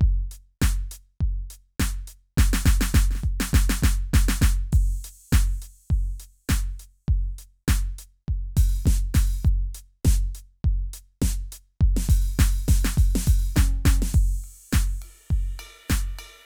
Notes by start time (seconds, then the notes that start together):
0.01 kick
0.31 closed hi-hat
0.62 kick, snare
0.91 closed hi-hat
1.21 kick
1.50 closed hi-hat
1.80 kick, snare
2.07 closed hi-hat
2.38 kick, snare
2.53 snare
2.64 kick, snare, hi-hat pedal
2.81 snare
2.94 kick, snare
3.11 snare
3.15 snare
3.24 kick
3.40 snare
3.53 kick, snare
3.69 snare
3.83 kick, snare
4.14 kick, snare
4.28 snare
4.42 kick, snare
4.72 kick, hi-hat pedal, crash
5.04 closed hi-hat
5.32 kick, snare
5.62 closed hi-hat
5.90 kick
6.20 closed hi-hat
6.49 kick, snare
6.80 closed hi-hat
7.08 kick
7.38 closed hi-hat
7.68 kick, snare
7.99 closed hi-hat
8.28 kick
8.57 open hi-hat, kick
8.84 kick, snare, hi-hat pedal
9.14 open hi-hat, kick, snare
9.44 kick, hi-hat pedal
9.75 closed hi-hat
10.05 kick, snare
10.35 closed hi-hat
10.64 kick
10.94 closed hi-hat
11.22 kick, snare
11.52 closed hi-hat
11.81 kick
11.97 snare
12.09 open hi-hat, kick
12.39 open hi-hat, kick, snare
12.68 open hi-hat, kick, snare
12.85 snare
12.97 open hi-hat, kick
13.15 snare
13.27 open hi-hat, kick
13.56 kick, snare, high tom
13.85 kick, snare, high tom
14.02 snare
14.14 kick, hi-hat pedal, crash
14.44 ride
14.71 kick, snare, hi-hat pedal
15.02 ride
15.29 kick, hi-hat pedal, ride
15.59 ride bell
15.88 kick, snare, hi-hat pedal
16.19 ride bell